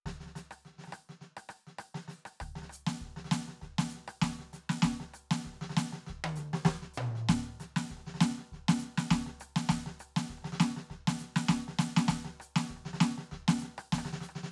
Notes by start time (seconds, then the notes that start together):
0.06 kick, snare
0.14 snare
0.21 snare
0.26 snare
0.36 snare, hi-hat pedal
0.51 cross-stick
0.66 snare
0.72 snare
0.76 snare
0.79 snare
0.84 cross-stick, snare
0.93 cross-stick
1.10 snare
1.22 snare
1.37 cross-stick
1.49 cross-stick
1.67 snare
1.79 cross-stick
1.95 snare
2.08 snare, hi-hat pedal
2.26 cross-stick
2.41 kick, cross-stick
2.48 kick
2.56 snare
2.63 snare
2.70 cross-stick, hi-hat pedal
2.87 snare
3.02 kick, snare
3.17 snare
3.25 snare
3.32 snare, hi-hat pedal
3.48 snare
3.62 kick, snare
3.79 snare
3.90 hi-hat pedal
3.95 snare
4.08 cross-stick
4.22 kick, snare
4.39 snare
4.54 snare, hi-hat pedal
4.70 snare
4.83 kick, snare
5.01 snare
5.14 cross-stick, hi-hat pedal
5.31 snare
5.45 kick, snare
5.54 snare
5.61 snare
5.70 snare
5.77 snare, hi-hat pedal
5.93 snare
6.07 kick, snare
6.24 high tom
6.36 snare, hi-hat pedal
6.54 snare
6.66 kick, snare
6.82 snare
6.94 hi-hat pedal, mid tom
7.16 snare
7.29 kick, snare
7.35 kick
7.44 snare
7.60 snare, hi-hat pedal
7.77 snare
7.90 kick, snare
7.97 snare
8.02 snare
8.07 snare
8.15 snare
8.21 snare, hi-hat pedal
8.38 snare
8.53 kick, snare
8.69 snare
8.79 snare, hi-hat pedal
8.98 snare
9.11 kick, snare
9.27 snare
9.40 cross-stick, hi-hat pedal
9.57 snare
9.70 kick, snare
9.87 snare
10.00 cross-stick, hi-hat pedal
10.17 snare
10.30 kick, snare
10.38 cross-stick
10.43 snare
10.45 snare
10.53 snare
10.60 snare, hi-hat pedal
10.77 snare
10.91 kick, snare
11.08 snare
11.19 snare, hi-hat pedal
11.36 snare
11.49 kick, snare
11.69 snare
11.79 snare, hi-hat pedal
11.97 snare
12.09 kick, snare
12.25 snare
12.41 cross-stick, hi-hat pedal
12.56 snare
12.70 kick, snare
12.77 cross-stick
12.83 snare
12.85 snare
12.94 snare
13.01 snare, hi-hat pedal
13.18 snare
13.32 kick, snare
13.48 snare
13.59 snare, hi-hat pedal
13.79 cross-stick
13.93 kick, snare
13.99 cross-stick
14.06 snare
14.13 snare
14.21 snare, hi-hat pedal
14.29 cross-stick
14.36 snare
14.44 snare